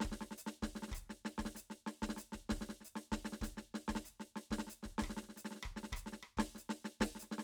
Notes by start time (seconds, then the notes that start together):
0.01 snare
0.05 kick
0.12 snare
0.21 snare
0.38 hi-hat pedal
0.47 snare
0.63 kick, snare
0.76 snare
0.83 snare
0.89 kick, snare
0.94 cross-stick, hi-hat pedal
1.10 snare
1.26 snare
1.39 kick, snare
1.46 snare
1.56 snare, hi-hat pedal
1.71 snare
1.87 snare
2.03 kick, snare
2.10 snare
2.17 snare, hi-hat pedal
2.33 kick, snare
2.50 kick, snare
2.62 snare
2.70 snare
2.81 snare
2.85 hi-hat pedal
2.96 snare
3.12 kick, snare
3.25 snare
3.33 snare
3.42 kick, hi-hat pedal
3.58 snare
3.75 snare
3.89 kick, snare
3.96 snare
4.05 cross-stick, hi-hat pedal
4.20 snare
4.36 snare
4.51 kick, snare
4.59 snare
4.68 snare, hi-hat pedal
4.83 kick, snare
4.99 kick, snare
5.04 cross-stick
5.10 snare
5.17 snare
5.23 snare
5.29 snare
5.37 snare, hi-hat pedal
5.45 snare
5.51 snare
5.56 snare
5.63 kick, cross-stick
5.77 snare
5.84 snare
5.90 kick, cross-stick, snare
5.97 hi-hat pedal
6.07 snare
6.13 snare
6.23 cross-stick
6.38 kick, snare
6.55 snare, hi-hat pedal
6.70 snare
6.85 snare
7.01 kick, snare
7.16 snare
7.20 snare, hi-hat pedal
7.32 snare
7.39 snare